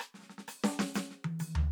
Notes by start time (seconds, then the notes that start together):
0.02 cross-stick, hi-hat pedal
0.14 snare
0.19 snare
0.22 snare
0.29 snare
0.38 snare
0.48 cross-stick, hi-hat pedal
0.64 snare
0.79 snare
0.94 snare, hi-hat pedal
1.10 snare
1.24 high tom
1.39 hi-hat pedal, high tom
1.55 floor tom